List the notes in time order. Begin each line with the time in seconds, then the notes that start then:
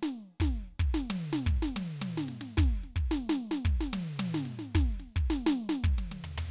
0.01 snare, hi-hat pedal
0.40 kick, snare
0.80 kick
0.95 snare
1.10 high tom
1.33 snare
1.47 kick
1.63 snare
1.77 high tom
2.02 high tom
2.18 snare
2.29 snare
2.41 snare
2.58 kick, snare
2.84 snare
2.96 kick
3.12 snare
3.30 snare
3.52 snare
3.65 kick
3.81 snare
3.93 high tom
4.20 high tom
4.35 snare
4.46 snare
4.59 snare
4.75 kick, snare
5.00 snare
5.16 kick
5.30 snare
5.47 snare
5.70 snare
5.84 kick
5.99 high tom
6.12 high tom
6.24 floor tom
6.38 floor tom